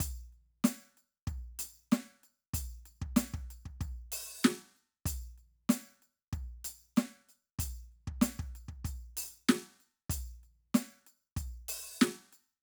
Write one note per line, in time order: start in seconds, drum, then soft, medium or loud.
0.01 kick medium
0.01 percussion loud
0.33 percussion soft
0.65 snare loud
0.65 percussion loud
0.98 percussion soft
1.28 kick medium
1.28 percussion soft
1.60 percussion loud
1.93 snare loud
1.93 percussion medium
2.24 percussion soft
2.54 kick medium
2.54 percussion loud
2.86 percussion soft
3.03 kick medium
3.17 snare loud
3.17 percussion loud
3.35 kick medium
3.51 percussion medium
3.66 kick soft
3.82 kick medium
3.82 percussion medium
4.13 percussion loud
4.44 snare loud
4.44 percussion medium
4.46 percussion soft
4.77 percussion soft
5.06 kick medium
5.06 percussion loud
5.39 percussion soft
5.70 snare loud
5.70 percussion loud
6.03 percussion soft
6.34 kick medium
6.34 percussion soft
6.65 percussion loud
6.97 snare loud
6.97 percussion medium
6.99 percussion medium
7.30 percussion soft
7.60 kick medium
7.60 percussion loud
7.93 percussion soft
8.08 kick medium
8.22 snare loud
8.22 percussion loud
8.40 kick medium
8.56 percussion soft
8.69 kick soft
8.86 kick medium
8.86 percussion medium
9.18 percussion loud
9.49 snare loud
9.49 percussion medium
9.81 percussion soft
10.11 kick medium
10.11 percussion loud
10.44 percussion soft
10.75 snare loud
10.75 percussion loud
11.08 percussion soft
11.37 kick medium
11.37 percussion medium
11.69 percussion loud
12.02 snare loud
12.02 percussion medium
12.34 percussion soft